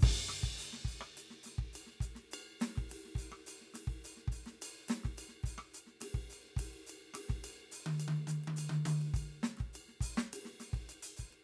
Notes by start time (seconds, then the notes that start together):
0.00 kick, hi-hat pedal, ride
0.29 cross-stick, hi-hat pedal
0.43 kick
0.58 hi-hat pedal, ride
0.73 snare
0.85 kick, hi-hat pedal, ride bell
1.00 cross-stick, ride
1.17 hi-hat pedal, ride
1.31 snare
1.43 snare, hi-hat pedal, ride
1.56 kick, snare, ride
1.73 hi-hat pedal, ride bell
1.87 snare
2.01 kick, hi-hat pedal, ride
2.16 snare, ride
2.32 hi-hat pedal, ride bell
2.60 snare, hi-hat pedal, ride
2.76 kick, snare
2.89 hi-hat pedal, ride
3.05 snare
3.15 kick, hi-hat pedal, ride
3.32 cross-stick, ride
3.47 hi-hat pedal, ride bell
3.61 snare
3.74 snare, hi-hat pedal, ride
3.87 kick, ride
4.04 hi-hat pedal, ride bell
4.17 snare
4.28 kick
4.32 hi-hat pedal, ride
4.46 snare, ride
4.62 hi-hat pedal, ride bell
4.89 snare, hi-hat pedal, ride
5.04 kick, snare
5.18 hi-hat pedal, ride bell
5.29 snare
5.43 kick, hi-hat pedal, ride
5.58 cross-stick
5.74 hi-hat pedal, ride bell
5.87 snare
6.01 snare, hi-hat pedal, ride
6.15 kick, ride
6.30 hi-hat pedal, ride bell
6.45 snare
6.57 kick, hi-hat pedal, ride
6.74 ride
6.87 hi-hat pedal, ride bell
7.14 cross-stick, hi-hat pedal, ride
7.29 kick, snare
7.44 hi-hat pedal, ride bell
7.72 hi-hat pedal, ride
7.86 high tom, ride
8.00 hi-hat pedal, ride bell
8.08 high tom
8.27 hi-hat pedal, high tom, ride bell
8.44 high tom, ride
8.57 hi-hat pedal, ride bell
8.70 open hi-hat, high tom
8.86 hi-hat pedal, high tom, ride
9.02 ride
9.14 kick, hi-hat pedal, ride bell
9.43 snare, hi-hat pedal, ride bell
9.57 kick, snare, ride
9.74 hi-hat pedal, ride bell
9.89 snare
10.01 kick, hi-hat pedal, ride
10.17 snare, ride
10.33 hi-hat pedal, ride
10.45 snare
10.60 snare, hi-hat pedal, ride
10.73 kick, ride
10.89 hi-hat pedal, ride bell
11.03 open hi-hat
11.17 kick, hi-hat pedal, ride bell
11.30 snare, ride